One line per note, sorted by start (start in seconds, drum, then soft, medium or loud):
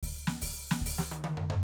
0.03 open hi-hat loud
0.03 kick medium
0.27 snare medium
0.41 open hi-hat loud
0.41 kick medium
0.71 snare loud
0.81 kick medium
0.86 open hi-hat loud
0.98 snare medium
1.11 hi-hat pedal soft
1.11 high tom loud
1.24 high tom loud
1.37 floor tom loud
1.50 floor tom loud